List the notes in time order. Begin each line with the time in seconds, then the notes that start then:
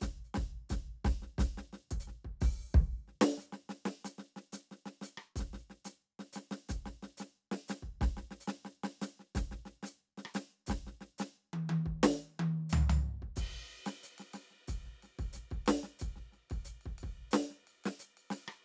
0.01 kick, snare, hi-hat pedal
0.24 hi-hat pedal
0.34 kick, snare
0.69 kick, snare, hi-hat pedal
1.04 kick, snare
1.22 snare
1.38 kick, snare, hi-hat pedal
1.57 snare
1.73 snare
1.91 kick, open hi-hat
2.00 hi-hat pedal
2.07 snare
2.24 kick
2.41 open hi-hat, kick, snare
2.74 kick
3.08 snare
3.21 snare
3.37 snare, hi-hat pedal
3.52 snare
3.69 snare
3.85 snare
4.04 snare, hi-hat pedal
4.18 snare
4.36 snare
4.52 snare, hi-hat pedal
4.71 snare
4.86 snare
5.01 snare, hi-hat pedal
5.17 cross-stick
5.36 kick, snare, hi-hat pedal
5.53 snare
5.58 hi-hat pedal
5.70 snare
5.85 snare, hi-hat pedal
6.19 snare
6.33 snare, hi-hat pedal
6.51 snare
6.69 kick, snare, hi-hat pedal
6.86 snare
7.03 snare
7.17 snare, hi-hat pedal
7.51 snare
7.68 snare, hi-hat pedal
7.82 kick
8.01 kick, snare
8.17 snare
8.31 snare
8.40 hi-hat pedal
8.48 snare
8.65 snare
8.83 snare
9.01 snare, hi-hat pedal
9.19 snare
9.35 kick, snare, hi-hat pedal
9.51 snare
9.65 snare
9.83 snare, hi-hat pedal
10.18 snare
10.25 cross-stick
10.34 snare, hi-hat pedal
10.66 kick, snare, hi-hat pedal
10.87 snare
11.01 snare
11.18 snare, hi-hat pedal
11.53 high tom
11.69 high tom
11.86 kick
12.03 snare
12.39 high tom
12.69 floor tom, hi-hat pedal
12.89 floor tom
13.22 kick
13.36 kick, hi-hat pedal, ride
13.86 snare, ride
14.03 hi-hat pedal
14.18 snare, ride
14.33 snare, ride
14.50 snare
14.54 snare
14.68 kick, hi-hat pedal, ride
14.86 snare
15.03 snare, ride
15.19 kick, ride
15.33 snare, hi-hat pedal
15.51 kick, ride
15.66 snare, ride
15.83 snare
15.99 kick, hi-hat pedal, ride
16.16 snare
16.32 snare, ride
16.50 kick, ride
16.65 hi-hat pedal
16.81 ride
16.86 kick
16.98 ride
17.03 kick
17.31 snare, hi-hat pedal, ride
17.50 snare
17.67 ride
17.84 snare, ride
17.99 hi-hat pedal
18.17 ride
18.30 snare, ride
18.48 cross-stick